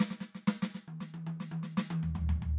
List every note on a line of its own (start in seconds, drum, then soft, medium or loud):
0.00 snare medium
0.11 snare soft
0.21 snare soft
0.35 snare soft
0.48 snare medium
0.63 snare medium
0.75 snare soft
0.88 high tom soft
1.01 snare soft
1.15 high tom medium
1.27 high tom medium
1.41 snare soft
1.52 high tom medium
1.64 snare soft
1.78 snare medium
1.91 high tom medium
2.04 floor tom medium
2.16 floor tom medium
2.30 floor tom medium
2.43 floor tom medium